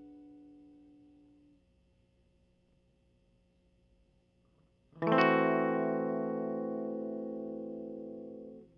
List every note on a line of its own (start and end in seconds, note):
4.97 5.02 E3
5.03 8.55 E3
5.08 8.66 A3
5.12 8.65 C4
5.19 8.65 F#4